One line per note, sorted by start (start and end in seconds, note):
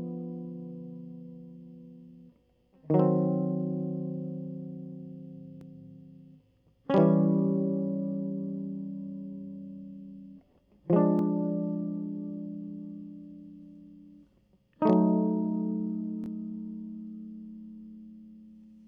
2.91 6.42 D#3
2.91 6.38 F#3
2.99 6.43 C4
6.89 10.42 C#4
6.94 10.45 E3
6.94 10.39 G3
10.90 14.28 F3
10.90 14.24 G#3
10.96 14.28 D4
14.82 18.88 A3
14.82 18.88 D#4
14.89 18.88 F#3